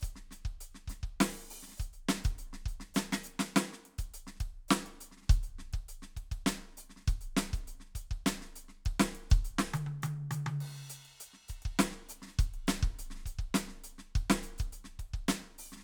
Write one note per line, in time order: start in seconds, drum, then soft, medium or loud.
0.01 closed hi-hat soft
0.01 kick medium
0.01 hi-hat pedal soft
0.16 snare soft
0.31 closed hi-hat soft
0.31 snare soft
0.45 kick medium
0.45 closed hi-hat soft
0.61 closed hi-hat medium
0.75 snare soft
0.88 closed hi-hat medium
0.88 kick soft
0.88 snare soft
1.03 kick medium
1.03 closed hi-hat soft
1.20 open hi-hat medium
1.20 snare loud
1.50 open hi-hat medium
1.63 snare soft
1.68 snare soft
1.71 snare soft
1.77 closed hi-hat soft
1.77 kick medium
1.77 hi-hat pedal soft
1.93 closed hi-hat soft
2.09 snare loud
2.16 snare soft
2.24 closed hi-hat soft
2.24 kick medium
2.24 snare soft
2.38 closed hi-hat soft
2.53 snare soft
2.66 closed hi-hat soft
2.66 kick medium
2.80 snare soft
2.94 snare loud
2.94 hi-hat pedal medium
3.12 snare loud
3.24 hi-hat pedal medium
3.39 snare loud
3.56 snare loud
3.73 snare soft
3.85 closed hi-hat soft
3.98 closed hi-hat medium
3.98 kick medium
4.14 closed hi-hat medium
4.27 snare soft
4.36 snare soft
4.40 kick medium
4.40 closed hi-hat soft
4.55 open hi-hat soft
4.68 snare loud
4.68 hi-hat pedal soft
4.86 snare soft
4.86 closed hi-hat soft
5.01 closed hi-hat medium
5.12 snare soft
5.17 snare soft
5.22 snare soft
5.28 closed hi-hat medium
5.28 kick loud
5.28 snare soft
5.43 closed hi-hat soft
5.59 snare soft
5.73 kick medium
5.73 closed hi-hat soft
5.88 closed hi-hat medium
6.02 snare soft
6.17 kick soft
6.17 closed hi-hat soft
6.31 kick medium
6.31 closed hi-hat soft
6.46 open hi-hat medium
6.46 snare loud
6.77 open hi-hat medium
6.77 hi-hat pedal soft
6.90 snare soft
6.96 snare soft
7.00 snare soft
7.07 closed hi-hat soft
7.07 kick medium
7.21 closed hi-hat soft
7.37 snare loud
7.53 closed hi-hat soft
7.53 kick medium
7.67 closed hi-hat soft
7.80 snare soft
7.85 snare soft
7.95 closed hi-hat medium
7.95 kick soft
8.11 kick medium
8.26 closed hi-hat medium
8.26 snare loud
8.41 snare soft
8.44 snare soft
8.56 closed hi-hat medium
8.69 snare soft
8.85 kick medium
8.85 closed hi-hat soft
9.00 snare loud
9.15 closed hi-hat soft
9.30 closed hi-hat soft
9.30 kick loud
9.45 closed hi-hat soft
9.59 snare loud
9.74 hi-hat pedal medium
9.74 high tom loud
9.86 high tom medium
10.03 hi-hat pedal medium
10.03 high tom loud
10.31 hi-hat pedal medium
10.31 high tom loud
10.46 high tom loud
10.61 crash medium
10.90 closed hi-hat medium
11.05 closed hi-hat soft
11.20 closed hi-hat medium
11.33 snare soft
11.48 closed hi-hat medium
11.48 kick soft
11.62 kick medium
11.62 closed hi-hat soft
11.79 closed hi-hat medium
11.79 snare loud
11.91 snare soft
12.09 open hi-hat medium
12.09 hi-hat pedal medium
12.22 snare soft
12.26 snare soft
12.28 snare soft
12.39 closed hi-hat soft
12.39 kick medium
12.54 closed hi-hat soft
12.67 closed hi-hat medium
12.67 snare loud
12.83 kick medium
12.99 closed hi-hat medium
13.10 snare soft
13.15 snare soft
13.18 snare soft
13.21 snare soft
13.26 closed hi-hat soft
13.26 kick soft
13.39 kick medium
13.39 closed hi-hat soft
13.54 closed hi-hat medium
13.54 snare loud
13.68 snare soft
13.70 snare soft
13.84 closed hi-hat medium
13.98 snare soft
14.15 closed hi-hat soft
14.15 kick medium
14.30 snare loud
14.43 closed hi-hat soft
14.58 closed hi-hat soft
14.58 kick medium
14.73 closed hi-hat medium
14.84 snare soft
14.99 kick soft
14.99 closed hi-hat soft
15.14 kick medium
15.28 open hi-hat medium
15.28 snare loud
15.43 snare soft
15.58 open hi-hat medium
15.72 snare soft
15.76 snare soft
15.79 snare soft